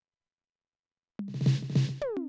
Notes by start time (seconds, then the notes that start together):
1.20 mid tom
1.28 snare
1.35 snare
1.41 snare
1.46 snare
1.60 snare
1.63 snare
1.70 snare
1.76 snare
1.89 snare
2.02 high tom
2.17 high tom